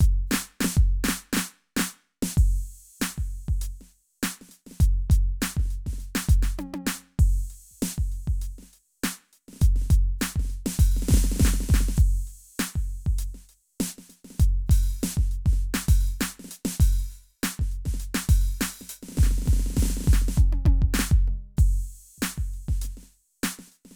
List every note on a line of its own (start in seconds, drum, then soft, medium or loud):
0.01 open hi-hat loud
0.01 kick loud
0.27 hi-hat pedal soft
0.32 snare loud
0.34 snare loud
0.61 snare loud
0.65 snare loud
0.77 kick loud
1.04 snare loud
1.09 snare loud
1.33 snare loud
1.37 snare loud
1.77 snare loud
1.80 snare loud
2.23 snare loud
2.35 kick loud
2.35 hi-hat pedal soft
2.35 crash loud
3.00 closed hi-hat loud
3.00 kick soft
3.00 snare loud
3.18 kick medium
3.49 kick medium
3.62 closed hi-hat loud
3.81 snare soft
4.23 closed hi-hat loud
4.23 snare loud
4.42 snare soft
4.49 closed hi-hat medium
4.49 snare soft
4.67 snare soft
4.71 snare soft
4.81 closed hi-hat loud
4.81 kick loud
5.10 closed hi-hat loud
5.10 kick loud
5.41 closed hi-hat loud
5.41 snare loud
5.41 hi-hat pedal soft
5.57 kick medium
5.57 snare soft
5.66 snare soft
5.71 closed hi-hat medium
5.87 kick medium
5.87 snare soft
5.94 snare soft
5.99 closed hi-hat medium
5.99 snare soft
6.16 snare loud
6.29 closed hi-hat loud
6.29 kick loud
6.43 snare medium
6.58 hi-hat pedal medium
6.58 high tom loud
6.74 high tom loud
6.84 kick soft
6.84 snare loud
6.84 hi-hat pedal medium
7.20 kick loud
7.20 crash loud
7.50 closed hi-hat medium
7.72 kick soft
7.83 closed hi-hat loud
7.83 snare loud
7.98 kick medium
8.12 closed hi-hat soft
8.28 kick medium
8.42 closed hi-hat medium
8.59 snare soft
8.63 snare soft
8.73 closed hi-hat soft
9.04 closed hi-hat loud
9.04 snare loud
9.33 closed hi-hat soft
9.49 snare soft
9.53 snare soft
9.56 snare soft
9.61 closed hi-hat loud
9.61 kick loud
9.61 snare soft
9.76 snare soft
9.82 snare soft
9.91 closed hi-hat loud
9.91 kick loud
10.19 closed hi-hat loud
10.19 snare loud
10.19 hi-hat pedal soft
10.36 kick medium
10.36 snare soft
10.45 snare soft
10.50 closed hi-hat soft
10.50 snare soft
10.66 snare loud
10.79 open hi-hat loud
10.79 kick loud
10.97 snare medium
11.03 snare medium
11.09 kick loud
11.09 snare loud
11.09 hi-hat pedal medium
11.14 snare loud
11.18 snare medium
11.24 snare medium
11.32 snare medium
11.36 snare medium
11.40 kick loud
11.40 snare loud
11.40 hi-hat pedal medium
11.45 snare loud
11.48 snare medium
11.54 snare medium
11.61 snare medium
11.64 snare soft
11.69 kick loud
11.69 snare medium
11.69 hi-hat pedal soft
11.74 snare loud
11.81 snare medium
11.89 snare medium
11.95 kick soft
11.95 hi-hat pedal medium
11.95 crash loud
11.98 kick loud
12.27 closed hi-hat soft
12.60 closed hi-hat loud
12.60 snare loud
12.76 kick medium
12.89 closed hi-hat soft
13.07 kick medium
13.19 closed hi-hat loud
13.35 snare soft
13.49 closed hi-hat soft
13.80 closed hi-hat loud
13.80 snare loud
13.99 snare soft
14.10 closed hi-hat medium
14.10 snare soft
14.25 snare soft
14.31 snare soft
14.39 closed hi-hat loud
14.39 kick loud
14.39 snare soft
14.67 kick loud
14.67 hi-hat pedal soft
14.71 open hi-hat loud
15.03 closed hi-hat loud
15.03 snare loud
15.03 hi-hat pedal medium
15.18 kick loud
15.18 snare soft
15.32 closed hi-hat medium
15.46 kick loud
15.46 snare soft
15.53 snare soft
15.74 snare loud
15.89 open hi-hat loud
15.89 kick loud
16.19 closed hi-hat loud
16.19 snare loud
16.19 hi-hat pedal medium
16.40 snare soft
16.45 snare soft
16.49 closed hi-hat loud
16.49 snare soft
16.65 snare loud
16.80 open hi-hat loud
16.80 kick loud
17.12 open hi-hat soft
17.44 open hi-hat loud
17.44 snare loud
17.44 hi-hat pedal medium
17.60 kick medium
17.60 snare soft
17.72 closed hi-hat soft
17.86 kick medium
17.86 snare medium
17.94 snare soft
18.00 closed hi-hat loud
18.15 snare loud
18.29 open hi-hat loud
18.29 kick loud
18.61 open hi-hat loud
18.61 snare loud
18.81 kick soft
18.81 snare soft
18.89 open hi-hat loud
18.89 hi-hat pedal soft
19.03 snare medium
19.09 snare soft
19.12 snare soft
19.16 snare soft
19.16 hi-hat pedal medium
19.18 kick loud
19.18 snare medium
19.23 snare medium
19.27 snare medium
19.31 snare medium
19.38 snare soft
19.42 snare soft
19.46 kick loud
19.46 snare soft
19.46 hi-hat pedal medium
19.48 snare medium
19.53 snare medium
19.57 snare soft
19.60 snare medium
19.66 snare medium
19.71 snare medium
19.74 snare soft
19.77 kick loud
19.77 snare loud
19.77 hi-hat pedal medium
19.83 snare medium
19.86 snare medium
19.90 snare medium
19.97 snare medium
20.01 snare medium
20.05 snare medium
20.08 kick loud
20.08 snare medium
20.08 hi-hat pedal medium
20.14 snare medium
20.22 snare soft
20.29 snare medium
20.37 kick loud
20.37 hi-hat pedal medium
20.37 high tom medium
20.53 high tom medium
20.66 kick loud
20.66 high tom loud
20.82 kick loud
20.94 snare loud
20.94 hi-hat pedal medium
21.00 snare loud
21.12 kick loud
21.28 mid tom medium
21.56 kick soft
21.56 hi-hat pedal medium
21.59 kick loud
21.59 crash loud
22.18 kick soft
22.23 closed hi-hat loud
22.23 snare loud
22.38 kick medium
22.54 closed hi-hat soft
22.69 kick medium
22.69 snare soft
22.82 closed hi-hat loud
22.82 snare soft
22.97 snare soft
23.03 snare soft
23.14 closed hi-hat soft
23.44 closed hi-hat loud
23.44 snare loud
23.59 snare soft
23.68 snare soft
23.72 closed hi-hat soft
23.85 snare soft
23.91 snare soft